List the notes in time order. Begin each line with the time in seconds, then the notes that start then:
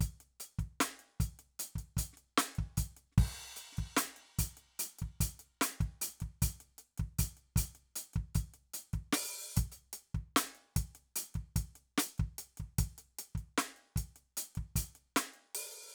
0.01 closed hi-hat, kick
0.21 closed hi-hat
0.40 closed hi-hat
0.59 kick, closed hi-hat
0.81 closed hi-hat, snare
1.00 closed hi-hat
1.20 closed hi-hat, kick
1.39 closed hi-hat
1.60 closed hi-hat
1.76 kick, closed hi-hat
1.97 closed hi-hat, kick
2.13 snare
2.18 closed hi-hat
2.38 closed hi-hat, snare
2.56 kick, closed hi-hat
2.78 closed hi-hat, kick
2.97 closed hi-hat
3.12 snare
3.18 kick, crash
3.35 closed hi-hat
3.57 closed hi-hat
3.73 snare
3.78 kick, closed hi-hat
3.97 closed hi-hat, snare
4.17 closed hi-hat
4.39 closed hi-hat, kick
4.57 closed hi-hat
4.79 closed hi-hat
4.99 kick, closed hi-hat
5.21 closed hi-hat, kick
5.40 closed hi-hat
5.62 closed hi-hat, snare
5.81 kick, closed hi-hat
6.02 closed hi-hat
6.21 kick, closed hi-hat
6.42 closed hi-hat, kick
6.61 closed hi-hat
6.79 closed hi-hat
6.98 kick, closed hi-hat
7.19 closed hi-hat, kick
7.37 closed hi-hat
7.56 closed hi-hat, kick
7.75 closed hi-hat
7.96 closed hi-hat
8.14 kick, closed hi-hat
8.35 closed hi-hat, kick
8.54 closed hi-hat
8.74 closed hi-hat
8.94 kick, closed hi-hat
9.13 open hi-hat, snare
9.56 kick, closed hi-hat, hi-hat pedal
9.72 closed hi-hat
9.93 closed hi-hat
10.15 kick, closed hi-hat
10.37 closed hi-hat, snare
10.55 closed hi-hat
10.77 kick, closed hi-hat
10.95 closed hi-hat
11.16 closed hi-hat
11.35 kick, closed hi-hat
11.56 kick, closed hi-hat
11.76 closed hi-hat
11.98 closed hi-hat, snare
12.18 kick, closed hi-hat
12.39 closed hi-hat
12.58 kick, closed hi-hat
12.79 kick, closed hi-hat
12.98 closed hi-hat
13.19 closed hi-hat
13.35 kick, closed hi-hat
13.58 closed hi-hat, snare
13.77 closed hi-hat
13.96 kick, closed hi-hat
14.16 closed hi-hat
14.37 closed hi-hat
14.56 kick, closed hi-hat
14.76 closed hi-hat, kick
14.96 closed hi-hat
15.17 closed hi-hat, snare
15.34 closed hi-hat
15.55 open hi-hat